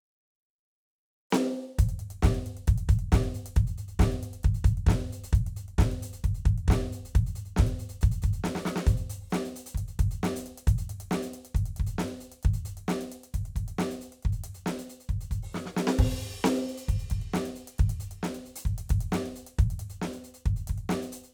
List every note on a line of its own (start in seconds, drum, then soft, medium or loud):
1.30 snare loud
1.30 hi-hat pedal medium
1.79 kick loud
1.79 closed hi-hat medium
1.89 closed hi-hat medium
1.99 closed hi-hat medium
2.10 closed hi-hat medium
2.22 kick loud
2.22 snare loud
2.34 closed hi-hat soft
2.46 closed hi-hat medium
2.57 closed hi-hat soft
2.67 kick loud
2.67 closed hi-hat medium
2.78 closed hi-hat medium
2.89 closed hi-hat medium
2.89 kick loud
2.99 closed hi-hat soft
3.12 kick loud
3.12 snare loud
3.24 closed hi-hat soft
3.34 closed hi-hat medium
3.46 closed hi-hat medium
3.56 kick loud
3.56 closed hi-hat medium
3.67 closed hi-hat medium
3.78 closed hi-hat medium
3.88 closed hi-hat medium
3.99 kick loud
3.99 snare loud
4.12 closed hi-hat soft
4.23 closed hi-hat medium
4.33 closed hi-hat medium
4.44 kick loud
4.54 closed hi-hat medium
4.64 closed hi-hat medium
4.64 kick loud
4.77 kick soft
4.77 closed hi-hat soft
4.86 kick loud
4.86 snare loud
5.01 closed hi-hat soft
5.12 closed hi-hat medium
5.24 closed hi-hat medium
5.33 kick loud
5.33 closed hi-hat medium
5.46 closed hi-hat soft
5.56 closed hi-hat medium
5.68 closed hi-hat soft
5.78 kick loud
5.78 snare loud
5.91 closed hi-hat soft
6.02 closed hi-hat medium
6.13 closed hi-hat medium
6.24 kick loud
6.24 closed hi-hat medium
6.35 closed hi-hat soft
6.45 kick loud
6.45 closed hi-hat soft
6.58 closed hi-hat soft
6.68 kick loud
6.68 snare loud
6.81 closed hi-hat soft
6.92 closed hi-hat medium
7.05 closed hi-hat medium
7.15 kick loud
7.15 closed hi-hat medium
7.26 closed hi-hat medium
7.35 closed hi-hat medium
7.45 closed hi-hat soft
7.56 kick loud
7.56 snare loud
7.67 closed hi-hat medium
7.79 closed hi-hat medium
7.89 closed hi-hat medium
8.01 closed hi-hat medium
8.01 kick loud
8.11 closed hi-hat medium
8.22 closed hi-hat medium
8.22 kick loud
8.33 closed hi-hat medium
8.44 snare loud
8.44 hi-hat pedal soft
8.55 snare loud
8.65 snare loud
8.76 snare loud
8.87 closed hi-hat medium
8.87 kick loud
8.97 closed hi-hat medium
9.10 closed hi-hat loud
9.20 open hi-hat soft
9.30 snare loud
9.30 hi-hat pedal soft
9.45 closed hi-hat medium
9.56 closed hi-hat medium
9.66 closed hi-hat loud
9.75 kick medium
9.75 closed hi-hat medium
9.88 closed hi-hat medium
9.99 kick loud
9.99 closed hi-hat medium
10.11 closed hi-hat medium
10.23 snare loud
10.36 closed hi-hat loud
10.46 closed hi-hat medium
10.58 closed hi-hat medium
10.67 kick loud
10.67 closed hi-hat medium
10.78 closed hi-hat medium
10.89 closed hi-hat medium
11.00 closed hi-hat medium
11.11 snare loud
11.22 closed hi-hat medium
11.34 closed hi-hat medium
11.45 closed hi-hat medium
11.55 kick loud
11.55 closed hi-hat medium
11.66 closed hi-hat medium
11.76 kick medium
11.76 closed hi-hat medium
11.87 closed hi-hat medium
11.98 snare loud
12.08 closed hi-hat soft
12.20 closed hi-hat medium
12.32 closed hi-hat medium
12.43 kick loud
12.43 closed hi-hat medium
12.54 closed hi-hat medium
12.65 closed hi-hat medium
12.77 closed hi-hat medium
12.88 snare loud
13.01 closed hi-hat medium
13.12 closed hi-hat medium
13.24 closed hi-hat medium
13.34 kick medium
13.34 closed hi-hat medium
13.45 closed hi-hat soft
13.56 kick medium
13.56 closed hi-hat medium
13.68 closed hi-hat medium
13.79 snare loud
13.91 closed hi-hat medium
14.01 closed hi-hat medium
14.12 closed hi-hat soft
14.23 kick loud
14.23 closed hi-hat soft
14.32 closed hi-hat medium
14.44 closed hi-hat medium
14.55 closed hi-hat medium
14.66 snare loud
14.79 closed hi-hat medium
14.90 closed hi-hat medium
15.00 closed hi-hat medium
15.09 kick medium
15.09 closed hi-hat soft
15.21 closed hi-hat medium
15.31 closed hi-hat medium
15.31 kick medium
15.42 open hi-hat medium
15.53 snare medium
15.53 hi-hat pedal soft
15.66 snare medium
15.77 snare loud
15.87 snare loud
15.99 kick loud
15.99 crash medium
16.10 closed hi-hat soft
16.31 closed hi-hat medium
16.44 snare loud
16.56 closed hi-hat medium
16.69 closed hi-hat medium
16.77 closed hi-hat medium
16.88 kick loud
16.88 closed hi-hat medium
16.99 closed hi-hat medium
17.10 kick medium
17.10 closed hi-hat medium
17.21 closed hi-hat soft
17.34 snare loud
17.45 closed hi-hat medium
17.56 closed hi-hat medium
17.67 closed hi-hat medium
17.78 kick loud
17.78 closed hi-hat medium
17.89 closed hi-hat medium
18.00 closed hi-hat medium
18.11 closed hi-hat medium
18.23 snare loud
18.35 closed hi-hat medium
18.40 kick soft
18.46 closed hi-hat medium
18.56 closed hi-hat loud
18.65 kick medium
18.65 closed hi-hat soft
18.78 closed hi-hat medium
18.89 kick loud
18.89 closed hi-hat medium
19.01 closed hi-hat medium
19.12 snare loud
19.26 closed hi-hat soft
19.36 closed hi-hat medium
19.47 closed hi-hat medium
19.59 kick loud
19.59 closed hi-hat medium
19.70 closed hi-hat medium
19.79 closed hi-hat medium
19.90 closed hi-hat medium
20.02 snare loud
20.13 closed hi-hat medium
20.24 closed hi-hat medium
20.46 kick loud
20.46 closed hi-hat soft
20.56 closed hi-hat soft
20.67 kick medium
20.67 closed hi-hat medium
20.78 closed hi-hat soft
20.89 snare loud
21.02 closed hi-hat medium
21.12 closed hi-hat loud
21.24 closed hi-hat medium